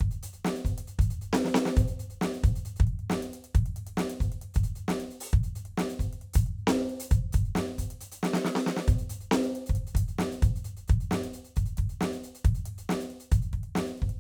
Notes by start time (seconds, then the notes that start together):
0.01 kick, closed hi-hat
0.12 closed hi-hat
0.24 closed hi-hat
0.34 closed hi-hat
0.46 snare
0.56 closed hi-hat
0.66 closed hi-hat, kick
0.79 closed hi-hat
0.88 closed hi-hat
1.00 closed hi-hat, kick
1.11 closed hi-hat
1.22 closed hi-hat
1.34 snare
1.46 snare
1.55 snare
1.66 snare
1.77 closed hi-hat, kick
1.88 closed hi-hat
2.00 closed hi-hat
2.11 closed hi-hat
2.22 snare
2.34 closed hi-hat
2.44 closed hi-hat, kick
2.56 closed hi-hat
2.66 closed hi-hat
2.77 closed hi-hat, kick
2.88 closed hi-hat
3.00 closed hi-hat
3.11 snare
3.23 closed hi-hat
3.34 closed hi-hat
3.45 closed hi-hat
3.56 kick, closed hi-hat
3.67 closed hi-hat
3.77 closed hi-hat
3.88 closed hi-hat
3.98 snare
4.10 closed hi-hat
4.21 closed hi-hat, kick
4.33 closed hi-hat
4.42 closed hi-hat
4.55 closed hi-hat, kick
4.64 closed hi-hat
4.76 closed hi-hat
4.89 snare
5.01 closed hi-hat
5.11 closed hi-hat
5.21 open hi-hat
5.34 kick, closed hi-hat
5.44 closed hi-hat
5.56 closed hi-hat
5.66 closed hi-hat
5.78 snare
5.90 closed hi-hat
6.00 closed hi-hat, kick
6.14 closed hi-hat
6.22 closed hi-hat
6.34 closed hi-hat, kick
6.47 closed hi-hat
6.59 closed hi-hat
6.68 snare
6.90 closed hi-hat
7.01 closed hi-hat
7.12 closed hi-hat, kick
7.24 closed hi-hat
7.33 closed hi-hat, kick
7.45 closed hi-hat
7.56 snare
7.69 closed hi-hat
7.79 closed hi-hat, kick
7.91 closed hi-hat
8.02 closed hi-hat
8.12 closed hi-hat
8.24 snare
8.34 snare
8.46 snare
8.56 snare
8.67 snare
8.77 snare
8.89 closed hi-hat, kick
8.99 closed hi-hat
9.10 closed hi-hat
9.21 closed hi-hat
9.32 snare
9.44 closed hi-hat
9.56 closed hi-hat
9.67 closed hi-hat, kick
9.76 closed hi-hat
9.88 closed hi-hat
9.96 kick, closed hi-hat
10.09 closed hi-hat
10.19 snare
10.33 closed hi-hat
10.43 closed hi-hat, kick
10.57 closed hi-hat
10.65 closed hi-hat
10.77 closed hi-hat
10.89 closed hi-hat, kick
11.01 closed hi-hat
11.12 snare
11.24 closed hi-hat
11.34 closed hi-hat
11.45 closed hi-hat
11.57 closed hi-hat, kick
11.66 closed hi-hat
11.78 kick, closed hi-hat
11.90 closed hi-hat
12.02 snare
12.14 closed hi-hat
12.24 closed hi-hat
12.36 closed hi-hat
12.45 kick, closed hi-hat
12.56 closed hi-hat
12.66 closed hi-hat
12.79 closed hi-hat
12.89 kick, snare
13.01 closed hi-hat
13.11 closed hi-hat
13.21 closed hi-hat
13.32 closed hi-hat, kick
13.43 closed hi-hat
13.54 kick, closed hi-hat
13.64 closed hi-hat
13.76 snare
13.87 closed hi-hat
13.98 closed hi-hat
14.03 kick
14.10 closed hi-hat